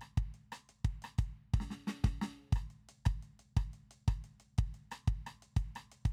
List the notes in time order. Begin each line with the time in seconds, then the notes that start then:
0.01 cross-stick, closed hi-hat
0.17 kick, closed hi-hat
0.34 closed hi-hat
0.52 closed hi-hat, cross-stick
0.69 closed hi-hat
0.85 kick, closed hi-hat
1.02 cross-stick, closed hi-hat
1.18 closed hi-hat, kick
1.54 kick, snare
1.60 snare
1.71 snare
1.87 snare
2.04 kick, snare
2.22 snare
2.53 closed hi-hat, kick, cross-stick
2.70 closed hi-hat
2.89 closed hi-hat
3.06 kick, cross-stick, closed hi-hat
3.23 closed hi-hat
3.39 closed hi-hat
3.57 kick, cross-stick, closed hi-hat
3.73 closed hi-hat
3.91 closed hi-hat
4.08 kick, cross-stick, closed hi-hat
4.24 closed hi-hat
4.40 closed hi-hat
4.58 kick, closed hi-hat
4.74 closed hi-hat
4.91 closed hi-hat, cross-stick
5.08 kick, closed hi-hat
5.27 cross-stick, closed hi-hat
5.42 closed hi-hat
5.57 kick, closed hi-hat
5.75 cross-stick, closed hi-hat
5.92 closed hi-hat
6.05 kick, closed hi-hat